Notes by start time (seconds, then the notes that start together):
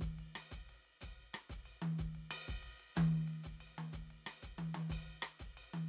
0.01 kick, hi-hat pedal, ride
0.19 ride
0.36 cross-stick, ride bell
0.51 kick, hi-hat pedal
0.69 ride
0.73 hi-hat pedal
0.85 ride
1.01 kick, hi-hat pedal, ride bell
1.23 hi-hat pedal
1.34 cross-stick, ride
1.50 kick, hi-hat pedal, ride
1.66 ride bell
1.82 high tom
1.99 kick, hi-hat pedal, ride
2.15 ride
2.31 cross-stick, ride bell
2.48 kick, hi-hat pedal
2.63 ride
2.80 ride
2.96 kick, hi-hat pedal, high tom, ride bell
3.28 ride
3.44 kick, hi-hat pedal, ride
3.61 ride bell
3.66 hi-hat pedal
3.78 high tom
3.93 kick, hi-hat pedal, ride
4.11 ride
4.27 cross-stick, ride bell
4.42 kick, hi-hat pedal
4.58 high tom, ride
4.64 hi-hat pedal
4.75 high tom, ride
4.90 kick, hi-hat pedal, ride bell
5.22 cross-stick, ride
5.40 kick, hi-hat pedal, ride
5.57 ride bell
5.61 hi-hat pedal
5.74 high tom